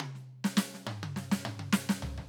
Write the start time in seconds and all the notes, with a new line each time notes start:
0.00 high tom
0.15 snare
0.44 snare
0.57 snare
0.74 snare
0.87 mid tom
1.03 high tom
1.16 snare
1.31 snare
1.45 mid tom
1.59 high tom
1.73 snare
1.89 snare
2.02 floor tom
2.18 floor tom